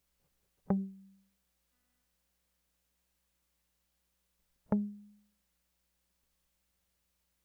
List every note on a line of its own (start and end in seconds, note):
0.71 1.32 G3
4.73 5.35 G#3